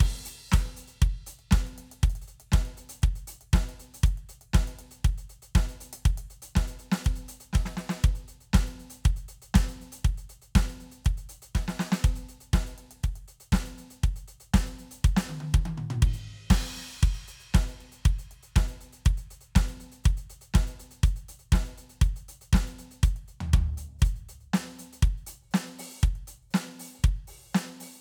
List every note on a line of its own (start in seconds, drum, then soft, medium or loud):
0.01 kick loud
0.01 crash loud
0.14 closed hi-hat medium
0.25 closed hi-hat loud
0.38 open hi-hat soft
0.48 hi-hat pedal soft
0.52 kick loud
0.52 snare loud
0.64 closed hi-hat soft
0.77 closed hi-hat medium
0.88 closed hi-hat medium
1.02 closed hi-hat soft
1.02 kick loud
1.13 closed hi-hat soft
1.27 closed hi-hat loud
1.39 closed hi-hat soft
1.51 kick loud
1.51 snare loud
1.67 closed hi-hat soft
1.78 closed hi-hat medium
1.92 closed hi-hat medium
2.03 kick loud
2.03 closed hi-hat medium
2.10 closed hi-hat medium
2.16 closed hi-hat medium
2.22 closed hi-hat medium
2.28 closed hi-hat medium
2.40 closed hi-hat medium
2.52 kick loud
2.52 snare loud
2.65 closed hi-hat soft
2.77 closed hi-hat medium
2.89 closed hi-hat loud
3.02 kick loud
3.02 closed hi-hat soft
3.16 closed hi-hat medium
3.28 closed hi-hat loud
3.41 closed hi-hat medium
3.53 kick loud
3.53 snare loud
3.69 closed hi-hat medium
3.80 closed hi-hat medium
3.94 closed hi-hat medium
4.04 kick loud
4.04 closed hi-hat medium
4.18 closed hi-hat soft
4.29 closed hi-hat medium
4.41 closed hi-hat medium
4.54 kick loud
4.54 snare loud
4.68 closed hi-hat medium
4.79 closed hi-hat medium
4.91 closed hi-hat medium
5.05 kick loud
5.05 closed hi-hat medium
5.18 closed hi-hat medium
5.30 closed hi-hat medium
5.42 closed hi-hat medium
5.55 kick loud
5.55 snare loud
5.69 closed hi-hat medium
5.81 closed hi-hat loud
5.93 closed hi-hat loud
6.06 kick loud
6.06 closed hi-hat medium
6.18 closed hi-hat medium
6.30 closed hi-hat medium
6.42 closed hi-hat loud
6.56 kick loud
6.56 snare loud
6.68 closed hi-hat medium
6.79 closed hi-hat medium
6.92 snare loud
7.05 kick loud
7.05 closed hi-hat medium
7.16 closed hi-hat medium
7.29 closed hi-hat loud
7.40 closed hi-hat medium
7.53 kick loud
7.53 snare medium
7.66 snare medium
7.77 snare medium
7.90 snare loud
8.03 closed hi-hat medium
8.03 kick loud
8.15 closed hi-hat medium
8.28 closed hi-hat medium
8.41 closed hi-hat medium
8.54 kick loud
8.54 snare loud
8.67 closed hi-hat medium
8.80 closed hi-hat medium
8.90 closed hi-hat loud
9.04 closed hi-hat medium
9.04 kick loud
9.17 closed hi-hat medium
9.29 closed hi-hat medium
9.42 closed hi-hat medium
9.55 kick loud
9.55 snare loud
9.69 closed hi-hat medium
9.82 closed hi-hat medium
9.93 closed hi-hat loud
10.05 kick loud
10.05 closed hi-hat medium
10.18 closed hi-hat medium
10.30 closed hi-hat medium
10.42 closed hi-hat medium
10.56 kick loud
10.56 snare loud
10.69 closed hi-hat medium
10.80 closed hi-hat medium
10.92 closed hi-hat medium
11.05 kick loud
11.05 closed hi-hat medium
11.18 closed hi-hat medium
11.29 closed hi-hat loud
11.42 closed hi-hat medium
11.55 kick medium
11.55 snare medium
11.68 snare medium
11.80 snare loud
11.92 snare loud
12.04 closed hi-hat medium
12.04 kick loud
12.16 closed hi-hat medium
12.29 closed hi-hat medium
12.41 closed hi-hat medium
12.54 kick loud
12.54 snare loud
12.67 closed hi-hat medium
12.78 closed hi-hat medium
12.91 closed hi-hat medium
13.04 kick medium
13.04 closed hi-hat medium
13.16 closed hi-hat medium
13.28 closed hi-hat medium
13.40 closed hi-hat medium
13.53 kick loud
13.53 snare loud
13.66 closed hi-hat medium
13.78 closed hi-hat medium
13.91 closed hi-hat medium
14.04 kick loud
14.04 closed hi-hat medium
14.16 closed hi-hat medium
14.28 closed hi-hat medium
14.40 closed hi-hat medium
14.54 kick loud
14.54 snare loud
14.66 closed hi-hat medium
14.79 closed hi-hat medium
14.91 closed hi-hat medium
15.05 closed hi-hat medium
15.05 kick loud
15.17 snare loud
15.29 high tom loud
15.41 high tom loud
15.54 kick loud
15.54 high tom medium
15.66 high tom loud
15.78 mid tom loud
15.91 mid tom loud
16.02 kick loud
16.02 ride medium
16.14 closed hi-hat medium
16.51 kick loud
16.51 snare loud
16.51 crash loud
16.78 closed hi-hat soft
16.88 closed hi-hat medium
17.03 closed hi-hat medium
17.03 kick loud
17.14 closed hi-hat soft
17.28 closed hi-hat medium
17.40 closed hi-hat soft
17.54 kick loud
17.54 snare loud
17.68 closed hi-hat soft
17.81 closed hi-hat soft
17.92 closed hi-hat medium
18.05 kick loud
18.05 closed hi-hat medium
18.19 closed hi-hat medium
18.31 closed hi-hat medium
18.43 closed hi-hat medium
18.56 kick loud
18.56 snare loud
18.68 closed hi-hat medium
18.81 closed hi-hat medium
18.93 closed hi-hat medium
19.06 kick loud
19.06 closed hi-hat medium
19.18 closed hi-hat medium
19.31 closed hi-hat medium
19.41 closed hi-hat medium
19.56 kick loud
19.56 snare loud
19.68 closed hi-hat medium
19.80 closed hi-hat medium
19.92 closed hi-hat medium
20.04 closed hi-hat medium
20.04 kick loud
20.17 closed hi-hat medium
20.30 closed hi-hat medium
20.41 closed hi-hat medium
20.54 kick loud
20.54 snare loud
20.67 closed hi-hat medium
20.80 closed hi-hat medium
20.91 closed hi-hat medium
21.04 closed hi-hat medium
21.04 kick loud
21.16 closed hi-hat medium
21.29 closed hi-hat medium
21.39 closed hi-hat medium
21.52 kick loud
21.52 snare loud
21.65 closed hi-hat medium
21.78 closed hi-hat medium
21.90 closed hi-hat medium
22.02 closed hi-hat medium
22.02 kick loud
22.16 closed hi-hat medium
22.29 closed hi-hat medium
22.41 closed hi-hat medium
22.53 kick loud
22.53 snare loud
22.67 closed hi-hat medium
22.79 closed hi-hat medium
22.91 closed hi-hat medium
23.03 closed hi-hat medium
23.03 kick loud
23.16 closed hi-hat soft
23.28 closed hi-hat soft
23.41 floor tom loud
23.54 kick loud
23.54 floor tom loud
23.78 open hi-hat medium
23.97 kick soft
23.97 hi-hat pedal soft
24.02 closed hi-hat medium
24.02 kick loud
24.16 closed hi-hat soft
24.29 closed hi-hat medium
24.41 closed hi-hat soft
24.54 snare loud
24.70 closed hi-hat soft
24.79 closed hi-hat loud
24.93 closed hi-hat medium
25.03 kick loud
25.03 closed hi-hat soft
25.18 closed hi-hat soft
25.27 closed hi-hat loud
25.42 open hi-hat soft
25.51 snare loud
25.51 hi-hat pedal soft
25.67 closed hi-hat soft
25.79 open hi-hat loud
25.94 open hi-hat soft
26.00 kick loud
26.00 hi-hat pedal soft
26.05 closed hi-hat soft
26.16 closed hi-hat soft
26.28 closed hi-hat loud
26.43 open hi-hat soft
26.51 snare loud
26.51 hi-hat pedal soft
26.66 closed hi-hat soft
26.80 open hi-hat loud
26.94 open hi-hat medium
26.99 kick soft
26.99 hi-hat pedal soft
27.04 kick loud
27.15 closed hi-hat soft
27.28 open hi-hat medium
27.43 open hi-hat soft
27.53 snare loud
27.53 hi-hat pedal soft
27.69 closed hi-hat soft
27.80 open hi-hat loud
27.95 open hi-hat soft